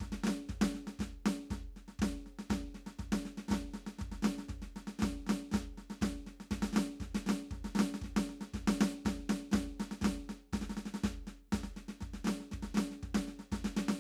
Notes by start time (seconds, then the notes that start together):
0.01 kick, snare
0.13 snare
0.24 snare
0.28 snare
0.49 kick, snare
0.62 snare
0.75 snare
0.88 snare
1.00 kick, snare
1.26 snare
1.51 kick, snare
1.77 snare
1.89 snare
2.00 kick, snare
2.27 snare
2.39 snare
2.51 kick, snare
2.75 snare
2.87 snare
2.99 kick, snare
3.13 snare
3.26 snare
3.38 snare
3.49 kick, snare
3.52 snare
3.74 snare
3.87 snare
3.99 kick, snare
4.12 snare
4.23 snare
4.25 snare
4.39 snare
4.49 kick, snare
4.62 snare
4.77 snare
4.88 snare
5.00 kick, snare
5.03 snare
5.27 snare
5.30 snare
5.52 kick, snare
5.55 snare
5.78 snare
5.91 snare
6.02 kick, snare
6.27 snare
6.41 snare
6.52 kick, snare
6.63 snare
6.74 snare
6.77 snare
7.01 kick, snare
7.15 snare
7.27 snare
7.30 snare
7.51 kick, snare
7.65 snare
7.76 snare
7.80 snare
7.95 snare
8.02 kick, snare
8.17 snare
8.30 snare
8.41 snare
8.54 kick, snare
8.68 snare
8.81 snare
9.06 kick, snare
9.19 snare
9.30 snare
9.52 snare
9.54 kick, snare
9.80 snare
9.92 snare
10.03 kick, snare
10.30 snare
10.53 kick, snare
10.62 snare
10.70 snare
10.78 snare
10.86 snare
10.95 snare
11.04 kick, snare
11.28 snare
11.53 kick, snare
11.64 snare
11.77 snare
11.89 snare
12.01 kick, snare
12.14 snare
12.25 snare
12.28 snare
12.41 snare
12.52 kick, snare
12.63 snare
12.75 snare
12.78 snare
12.92 snare
13.03 kick, snare
13.15 snare
13.28 snare
13.40 snare
13.52 kick, snare
13.65 snare
13.77 snare
13.89 snare